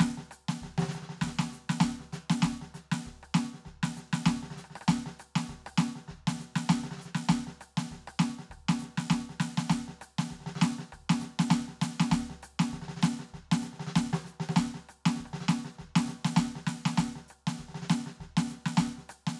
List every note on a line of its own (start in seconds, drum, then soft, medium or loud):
0.01 kick soft
0.01 snare loud
0.19 snare soft
0.32 cross-stick medium
0.32 hi-hat pedal medium
0.50 snare medium
0.63 kick soft
0.63 snare soft
0.79 snare loud
0.83 snare medium
0.88 snare soft
0.90 snare medium
0.90 hi-hat pedal medium
0.96 snare medium
1.03 snare soft
1.10 snare medium
1.18 snare soft
1.23 kick soft
1.23 snare loud
1.40 snare loud
1.54 snare soft
1.54 hi-hat pedal medium
1.71 snare loud
1.82 kick soft
1.82 snare loud
2.01 snare soft
2.14 snare medium
2.14 hi-hat pedal medium
2.31 snare loud
2.44 kick soft
2.44 snare loud
2.63 snare soft
2.76 snare soft
2.76 hi-hat pedal medium
2.93 snare loud
3.07 kick soft
3.07 snare soft
3.24 cross-stick medium
3.36 snare loud
3.36 hi-hat pedal medium
3.55 snare soft
3.67 kick soft
3.67 snare soft
3.84 snare loud
3.97 snare soft
3.97 hi-hat pedal medium
4.14 snare loud
4.27 kick soft
4.27 snare loud
4.44 snare soft
4.52 snare medium
4.58 snare medium
4.58 hi-hat pedal soft
4.65 cross-stick soft
4.71 snare soft
4.77 cross-stick medium
4.82 cross-stick medium
4.89 kick soft
4.89 snare loud
5.07 snare medium
5.20 cross-stick medium
5.20 hi-hat pedal medium
5.37 snare loud
5.50 kick soft
5.50 snare soft
5.68 cross-stick medium
5.79 snare loud
5.79 hi-hat pedal medium
5.97 snare soft
6.09 kick soft
6.09 snare soft
6.29 snare loud
6.41 snare soft
6.41 hi-hat pedal soft
6.57 snare loud
6.71 kick soft
6.71 snare loud
6.85 snare medium
6.92 snare medium
6.98 snare medium
7.03 snare soft
7.03 hi-hat pedal medium
7.16 snare medium
7.30 kick soft
7.30 snare loud
7.48 snare soft
7.62 cross-stick medium
7.62 hi-hat pedal medium
7.79 snare loud
7.92 kick soft
7.92 snare soft
8.09 cross-stick medium
8.21 snare loud
8.21 hi-hat pedal soft
8.40 snare soft
8.52 kick soft
8.52 cross-stick medium
8.70 snare loud
8.81 snare soft
8.81 hi-hat pedal medium
8.99 snare medium
9.11 kick soft
9.11 snare loud
9.31 snare soft
9.41 snare loud
9.41 hi-hat pedal medium
9.59 snare loud
9.71 kick soft
9.71 snare loud
9.89 snare soft
10.03 cross-stick medium
10.03 hi-hat pedal medium
10.20 snare loud
10.32 kick soft
10.32 snare soft
10.47 snare medium
10.57 snare medium
10.61 snare loud
10.61 hi-hat pedal soft
10.80 snare medium
10.94 kick soft
10.94 cross-stick medium
11.11 snare loud
11.22 snare soft
11.22 hi-hat pedal medium
11.40 snare loud
11.52 kick soft
11.52 snare loud
11.69 snare soft
11.83 snare loud
11.83 hi-hat pedal medium
12.01 snare loud
12.13 kick soft
12.13 snare loud
12.31 snare soft
12.44 cross-stick medium
12.44 hi-hat pedal medium
12.61 snare loud
12.74 kick soft
12.74 snare soft
12.83 snare medium
12.90 snare medium
12.98 snare medium
13.03 snare loud
13.03 hi-hat pedal medium
13.09 cross-stick soft
13.20 snare soft
13.35 kick soft
13.35 snare soft
13.53 snare loud
13.63 snare soft
13.63 hi-hat pedal medium
13.81 snare medium
13.88 snare medium
13.97 kick soft
13.97 snare loud
14.14 snare loud
14.26 snare soft
14.26 hi-hat pedal soft
14.34 cross-stick soft
14.41 snare medium
14.50 snare medium
14.57 kick soft
14.57 snare loud
14.76 snare soft
14.90 cross-stick medium
14.90 hi-hat pedal soft
15.07 snare loud
15.18 kick soft
15.18 snare soft
15.27 cross-stick soft
15.31 snare soft
15.35 snare medium
15.42 snare medium
15.50 snare loud
15.50 hi-hat pedal soft
15.66 snare medium
15.80 kick soft
15.80 snare soft
15.97 snare loud
16.09 snare medium
16.09 hi-hat pedal soft
16.26 snare loud
16.38 kick soft
16.38 snare loud
16.57 snare medium
16.68 snare loud
16.68 hi-hat pedal medium
16.87 snare loud
16.99 kick soft
16.99 snare loud
17.17 snare soft
17.29 cross-stick soft
17.29 hi-hat pedal soft
17.48 snare loud
17.60 kick soft
17.60 snare soft
17.70 snare soft
17.76 snare medium
17.83 snare medium
17.90 snare loud
17.90 hi-hat pedal medium
18.08 snare medium
18.21 kick soft
18.21 snare soft
18.38 snare loud
18.50 snare soft
18.50 hi-hat pedal medium
18.67 snare medium
18.79 kick soft
18.79 snare loud
18.99 snare soft
19.10 cross-stick medium
19.10 hi-hat pedal medium
19.28 snare medium